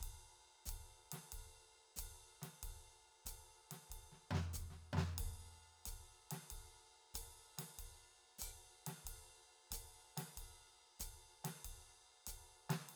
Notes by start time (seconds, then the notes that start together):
0.01 kick, ride
0.66 kick, hi-hat pedal, ride
1.12 snare, ride
1.33 kick, ride
1.97 kick, hi-hat pedal, ride
2.42 snare, ride
2.63 kick, ride
3.26 kick, hi-hat pedal, ride
3.72 snare, ride
3.90 kick, ride
4.12 snare
4.31 snare, floor tom
4.54 kick, hi-hat pedal, ride
4.71 snare
4.94 floor tom
4.98 snare
5.19 kick, ride
5.86 kick, hi-hat pedal, ride
6.31 snare, ride
6.51 kick, ride
7.15 kick, hi-hat pedal, ride
7.59 snare, ride
7.79 kick, ride
8.39 kick, hi-hat pedal, ride
8.87 snare, ride
9.05 kick, ride
9.71 kick, hi-hat pedal, ride
10.18 snare, ride
10.37 kick, ride
11.00 kick, hi-hat pedal, ride
11.45 snare, ride
11.65 kick, ride
12.27 kick, hi-hat pedal, ride
12.70 snare, ride
12.89 ride